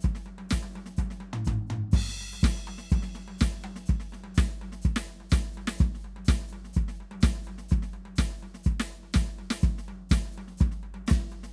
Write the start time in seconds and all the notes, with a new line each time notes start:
0.01 kick, hi-hat pedal, high tom
0.15 snare
0.23 hi-hat pedal, high tom
0.38 high tom
0.49 kick, snare, hi-hat pedal
0.63 high tom
0.72 hi-hat pedal, high tom
0.86 snare
0.97 kick, hi-hat pedal, high tom
1.10 snare
1.21 high tom
1.33 floor tom
1.45 kick, floor tom, hi-hat pedal
1.67 floor tom, hi-hat pedal
1.92 kick, hi-hat pedal, crash
2.09 snare
2.14 hi-hat pedal
2.21 high tom
2.33 high tom
2.40 kick, hi-hat pedal
2.44 snare
2.57 high tom
2.64 hi-hat pedal, high tom
2.78 snare
2.90 kick, hi-hat pedal, high tom
3.03 snare
3.13 snare, hi-hat pedal, high tom
3.28 high tom
3.39 kick, snare, hi-hat pedal
3.52 high tom
3.62 hi-hat pedal, high tom
3.76 snare
3.86 kick, hi-hat pedal, high tom
4.00 snare
4.09 hi-hat pedal, high tom
4.13 snare
4.24 high tom
4.35 kick, snare, hi-hat pedal
4.49 high tom
4.57 hi-hat pedal
4.62 high tom
4.72 snare
4.82 kick, hi-hat pedal, high tom
4.96 snare
5.05 hi-hat pedal, high tom
5.20 high tom
5.30 kick, snare, hi-hat pedal
5.45 high tom
5.53 hi-hat pedal
5.58 high tom
5.67 snare
5.78 kick, hi-hat pedal
5.83 high tom
5.95 snare
6.00 hi-hat pedal
6.05 high tom
6.16 high tom
6.25 kick, snare, hi-hat pedal
6.41 high tom
6.48 hi-hat pedal
6.53 high tom
6.65 snare
6.73 kick, hi-hat pedal, high tom
6.88 snare
6.95 hi-hat pedal
7.00 high tom
7.11 high tom
7.21 kick, snare, hi-hat pedal
7.36 high tom
7.44 hi-hat pedal, high tom
7.58 snare
7.69 kick, hi-hat pedal, high tom
7.83 snare
7.91 hi-hat pedal, high tom
8.05 high tom
8.16 kick, snare, hi-hat pedal
8.31 high tom
8.38 hi-hat pedal
8.43 high tom
8.54 snare
8.63 kick, hi-hat pedal
8.69 high tom
8.80 snare
8.87 hi-hat pedal
8.91 high tom
9.03 high tom
9.13 kick, snare, hi-hat pedal
9.27 high tom
9.36 hi-hat pedal, high tom
9.51 snare
9.61 kick, hi-hat pedal, high tom
9.78 snare
9.84 hi-hat pedal
9.88 high tom
10.10 kick, snare, hi-hat pedal
10.26 high tom
10.32 hi-hat pedal
10.38 high tom
10.48 snare
10.58 kick, hi-hat pedal, high tom
10.71 snare
10.81 hi-hat pedal, high tom
10.94 high tom
11.07 snare, hi-hat pedal
11.11 kick
11.20 high tom
11.30 hi-hat pedal, high tom
11.44 snare